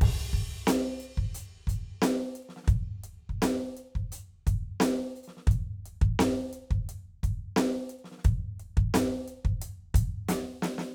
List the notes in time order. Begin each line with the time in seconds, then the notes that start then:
0.01 kick, crash
0.33 kick
0.43 kick
0.67 closed hi-hat, snare
1.00 open hi-hat
1.17 kick
1.34 closed hi-hat
1.67 closed hi-hat, kick
2.02 closed hi-hat, snare
2.35 closed hi-hat
2.42 closed hi-hat
2.49 snare
2.56 snare
2.63 snare
2.67 kick, closed hi-hat
3.04 closed hi-hat
3.29 kick
3.42 closed hi-hat, snare
3.77 closed hi-hat
3.95 kick
4.12 closed hi-hat
4.47 kick, closed hi-hat
4.80 closed hi-hat, snare
5.15 closed hi-hat
5.23 closed hi-hat
5.27 snare
5.37 snare
5.47 kick, snare
5.51 closed hi-hat
5.86 closed hi-hat
6.01 kick
6.19 snare, closed hi-hat
6.53 closed hi-hat
6.70 kick
6.89 closed hi-hat
7.23 kick, closed hi-hat
7.56 snare, closed hi-hat
7.89 closed hi-hat
7.99 closed hi-hat
8.04 snare
8.11 snare
8.18 snare
8.24 kick, snare, closed hi-hat
8.60 closed hi-hat
8.77 kick
8.94 closed hi-hat, snare
9.28 closed hi-hat
9.45 kick
9.62 closed hi-hat
9.94 kick, closed hi-hat
10.29 closed hi-hat, snare
10.36 snare
10.62 snare
10.78 snare